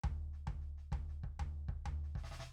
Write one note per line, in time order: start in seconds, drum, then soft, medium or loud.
0.04 kick medium
0.04 floor tom medium
0.33 snare soft
0.47 kick medium
0.47 floor tom medium
0.61 snare soft
0.77 snare soft
0.92 kick medium
0.92 floor tom medium
1.09 snare soft
1.24 kick soft
1.39 floor tom medium
1.69 kick medium
1.86 floor tom medium
2.04 snare soft
2.09 snare soft
2.15 kick medium
2.15 snare soft
2.24 snare soft
2.31 snare soft
2.39 snare soft